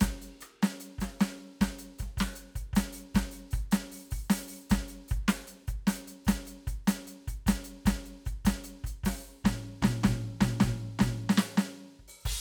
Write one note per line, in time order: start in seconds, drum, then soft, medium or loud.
0.01 open hi-hat loud
0.01 kick medium
0.01 snare loud
0.01 hi-hat pedal medium
0.22 closed hi-hat soft
0.41 closed hi-hat medium
0.41 cross-stick medium
0.41 hi-hat pedal soft
0.63 open hi-hat medium
0.63 snare loud
0.63 hi-hat pedal soft
0.81 closed hi-hat medium
0.99 closed hi-hat medium
0.99 kick soft
0.99 snare medium
0.99 hi-hat pedal soft
1.20 open hi-hat medium
1.20 snare loud
1.20 hi-hat pedal soft
1.61 open hi-hat medium
1.61 kick soft
1.61 snare loud
1.61 hi-hat pedal soft
1.79 closed hi-hat medium
1.99 closed hi-hat medium
1.99 kick medium
1.99 hi-hat pedal soft
2.03 snare soft
2.18 closed hi-hat medium
2.18 kick medium
2.18 snare loud
2.18 hi-hat pedal soft
2.36 closed hi-hat medium
2.56 open hi-hat medium
2.56 kick medium
2.56 hi-hat pedal soft
2.74 open hi-hat loud
2.74 kick medium
2.74 snare loud
2.79 hi-hat pedal soft
2.93 open hi-hat medium
3.15 open hi-hat medium
3.15 kick medium
3.15 snare loud
3.15 hi-hat pedal soft
3.32 open hi-hat medium
3.51 open hi-hat medium
3.51 kick medium
3.72 open hi-hat loud
3.72 snare loud
3.72 hi-hat pedal soft
3.92 open hi-hat medium
4.11 open hi-hat medium
4.11 kick medium
4.30 open hi-hat loud
4.30 snare loud
4.48 open hi-hat medium
4.70 closed hi-hat medium
4.70 kick medium
4.70 snare loud
4.88 open hi-hat medium
5.08 open hi-hat medium
5.08 kick medium
5.29 closed hi-hat medium
5.29 snare loud
5.48 closed hi-hat medium
5.68 open hi-hat medium
5.68 kick medium
5.68 hi-hat pedal soft
5.88 open hi-hat medium
5.88 snare loud
5.96 hi-hat pedal soft
6.08 closed hi-hat medium
6.25 closed hi-hat medium
6.25 kick medium
6.25 snare loud
6.25 hi-hat pedal soft
6.46 closed hi-hat medium
6.46 hi-hat pedal soft
6.68 open hi-hat medium
6.68 kick medium
6.68 hi-hat pedal medium
6.85 closed hi-hat loud
6.85 snare loud
6.85 hi-hat pedal soft
7.03 hi-hat pedal soft
7.08 closed hi-hat medium
7.28 open hi-hat medium
7.28 kick medium
7.28 hi-hat pedal medium
7.47 open hi-hat loud
7.47 kick medium
7.47 snare loud
7.47 hi-hat pedal soft
7.65 closed hi-hat medium
7.86 open hi-hat loud
7.86 kick medium
7.86 snare loud
7.86 hi-hat pedal medium
8.06 open hi-hat medium
8.06 hi-hat pedal soft
8.26 open hi-hat medium
8.26 kick medium
8.26 hi-hat pedal medium
8.45 closed hi-hat medium
8.45 kick medium
8.45 snare loud
8.64 closed hi-hat medium
8.64 hi-hat pedal soft
8.84 closed hi-hat medium
8.84 kick medium
8.84 hi-hat pedal soft
9.04 open hi-hat loud
9.04 kick medium
9.04 snare loud
9.45 kick medium
9.45 snare loud
9.45 mid tom loud
9.82 kick soft
9.82 snare loud
9.82 mid tom loud
10.04 kick medium
10.04 snare loud
10.04 mid tom loud
10.41 kick soft
10.41 snare loud
10.41 mid tom loud
10.61 kick soft
10.61 snare loud
10.61 mid tom loud
11.00 kick soft
11.00 snare loud
11.00 mid tom loud
11.30 snare loud
11.38 snare loud
11.58 snare loud
12.00 kick soft
12.08 open hi-hat medium
12.23 kick soft
12.26 kick medium
12.26 crash loud